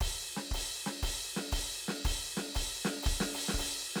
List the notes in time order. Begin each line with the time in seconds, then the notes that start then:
0.01 kick, crash
0.37 snare
0.51 kick, crash
0.57 kick
0.86 snare
1.03 kick, crash
1.37 snare
1.52 kick, crash
1.88 snare
2.05 kick, crash
2.37 snare
2.55 kick, crash
2.85 snare
3.03 kick, crash
3.20 snare
3.34 crash
3.49 snare
3.54 kick
3.58 kick, crash
3.96 snare